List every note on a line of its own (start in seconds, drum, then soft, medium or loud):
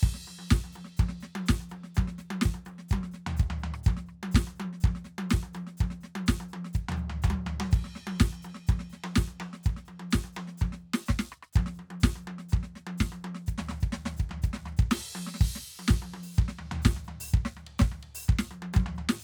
0.01 kick loud
0.01 hi-hat pedal medium
0.05 high tom medium
0.14 snare soft
0.23 hi-hat pedal soft
0.28 high tom medium
0.39 high tom medium
0.49 kick loud
0.49 snare loud
0.49 hi-hat pedal medium
0.64 high tom soft
0.73 hi-hat pedal medium
0.73 high tom medium
0.85 snare soft
0.97 kick loud
0.97 hi-hat pedal medium
0.97 high tom loud
1.09 snare soft
1.20 snare soft
1.20 hi-hat pedal medium
1.35 high tom loud
1.46 kick loud
1.46 snare loud
1.46 hi-hat pedal medium
1.60 high tom soft
1.69 hi-hat pedal soft
1.69 high tom medium
1.84 snare soft
1.95 kick loud
1.95 hi-hat pedal medium
1.95 high tom loud
2.08 snare soft
2.18 snare soft
2.18 hi-hat pedal medium
2.31 high tom loud
2.41 snare loud
2.41 hi-hat pedal medium
2.46 kick loud
2.54 high tom medium
2.65 hi-hat pedal soft
2.65 high tom medium
2.79 snare soft
2.89 kick loud
2.89 hi-hat pedal medium
2.93 high tom loud
3.03 snare soft
3.12 snare soft
3.12 hi-hat pedal soft
3.27 floor tom loud
3.37 kick loud
3.37 snare soft
3.37 hi-hat pedal medium
3.50 floor tom loud
3.59 hi-hat pedal soft
3.64 floor tom loud
3.74 cross-stick medium
3.83 kick loud
3.83 hi-hat pedal medium
3.88 high tom loud
3.97 snare soft
4.06 cross-stick soft
4.06 hi-hat pedal soft
4.23 high tom loud
4.32 kick loud
4.32 hi-hat pedal medium
4.36 snare loud
4.47 high tom medium
4.55 hi-hat pedal soft
4.60 high tom loud
4.73 snare soft
4.80 kick loud
4.80 hi-hat pedal medium
4.86 high tom loud
4.95 snare soft
5.04 snare soft
5.04 hi-hat pedal soft
5.18 high tom loud
5.30 kick loud
5.30 snare loud
5.30 hi-hat pedal medium
5.43 high tom medium
5.53 hi-hat pedal soft
5.53 high tom loud
5.67 snare soft
5.77 kick loud
5.77 hi-hat pedal medium
5.81 high tom loud
5.91 snare soft
6.01 snare soft
6.01 hi-hat pedal soft
6.16 high tom loud
6.26 kick loud
6.26 snare loud
6.26 hi-hat pedal medium
6.40 high tom medium
6.49 hi-hat pedal soft
6.54 high tom loud
6.65 snare soft
6.73 kick medium
6.73 hi-hat pedal medium
6.89 floor tom loud
6.89 high tom loud
6.96 hi-hat pedal soft
7.10 floor tom medium
7.22 kick loud
7.22 floor tom loud
7.22 hi-hat pedal medium
7.30 high tom loud
7.46 floor tom loud
7.46 hi-hat pedal soft
7.60 high tom loud
7.71 kick loud
7.71 hi-hat pedal medium
7.71 ride medium
7.84 snare soft
7.96 snare soft
7.96 hi-hat pedal soft
8.07 high tom loud
8.19 kick loud
8.19 snare loud
8.19 hi-hat pedal medium
8.33 high tom soft
8.42 hi-hat pedal medium
8.42 high tom medium
8.55 snare soft
8.67 kick loud
8.67 hi-hat pedal medium
8.67 high tom loud
8.79 snare soft
8.90 snare soft
8.90 hi-hat pedal soft
9.04 high tom medium
9.15 kick loud
9.15 snare loud
9.15 hi-hat pedal medium
9.28 high tom medium
9.40 high tom medium
9.53 snare soft
9.63 kick loud
9.63 hi-hat pedal medium
9.63 high tom medium
9.77 snare soft
9.85 hi-hat pedal soft
9.85 high tom medium
10.00 high tom medium
10.11 snare loud
10.11 hi-hat pedal medium
10.15 kick medium
10.24 high tom medium
10.33 hi-hat pedal soft
10.33 high tom medium
10.48 snare soft
10.58 hi-hat pedal medium
10.58 high tom medium
10.62 kick loud
10.72 snare soft
10.79 hi-hat pedal soft
10.94 snare loud
11.06 kick loud
11.06 snare medium
11.06 hi-hat pedal medium
11.19 snare medium
11.28 hi-hat pedal soft
11.32 cross-stick medium
11.43 cross-stick medium
11.53 kick loud
11.53 hi-hat pedal medium
11.57 high tom loud
11.66 snare medium
11.74 hi-hat pedal soft
11.79 high tom medium
11.90 high tom medium
12.00 kick loud
12.00 snare loud
12.00 hi-hat pedal medium
12.16 high tom medium
12.22 hi-hat pedal soft
12.27 high tom loud
12.38 snare soft
12.49 hi-hat pedal medium
12.49 high tom medium
12.53 kick loud
12.63 snare soft
12.76 snare soft
12.87 high tom loud
12.98 kick medium
12.98 snare loud
12.98 hi-hat pedal medium
13.12 high tom medium
13.20 hi-hat pedal soft
13.24 high tom loud
13.35 snare soft
13.46 kick medium
13.46 hi-hat pedal medium
13.58 snare medium
13.58 floor tom medium
13.69 snare medium
13.69 floor tom medium
13.80 kick loud
13.80 hi-hat pedal medium
13.93 snare medium
13.93 floor tom medium
14.06 snare medium
14.06 floor tom medium
14.17 kick medium
14.17 hi-hat pedal medium
14.29 floor tom medium
14.29 high tom medium
14.42 kick loud
14.42 hi-hat pedal medium
14.53 snare medium
14.53 floor tom medium
14.66 cross-stick medium
14.66 floor tom medium
14.77 kick loud
14.77 hi-hat pedal medium
14.91 snare loud
14.91 crash loud
15.15 high tom loud
15.27 snare medium
15.34 snare medium
15.34 hi-hat pedal medium
15.41 kick loud
15.41 crash loud
15.55 snare soft
15.79 high tom medium
15.87 kick loud
15.87 snare loud
15.87 hi-hat pedal medium
16.02 high tom medium
16.14 high tom medium
16.23 open hi-hat medium
16.35 kick loud
16.35 hi-hat pedal medium
16.35 high tom medium
16.48 snare medium
16.59 floor tom medium
16.71 floor tom loud
16.82 kick loud
16.82 snare loud
16.82 hi-hat pedal medium
16.97 floor tom medium
17.04 hi-hat pedal soft
17.08 floor tom medium
17.20 open hi-hat loud
17.31 kick loud
17.31 floor tom soft
17.31 hi-hat pedal medium
17.45 snare medium
17.52 hi-hat pedal soft
17.57 floor tom medium
17.67 floor tom medium
17.79 kick loud
17.79 snare loud
17.79 hi-hat pedal medium
17.92 floor tom medium
18.00 hi-hat pedal soft
18.00 floor tom medium
18.15 open hi-hat loud
18.25 floor tom medium
18.25 hi-hat pedal medium
18.29 kick loud
18.39 snare loud
18.51 high tom medium
18.62 high tom medium
18.73 kick loud
18.73 hi-hat pedal medium
18.73 high tom loud
18.86 floor tom medium
18.95 floor tom medium
18.95 hi-hat pedal soft
19.09 snare loud
19.19 hi-hat pedal medium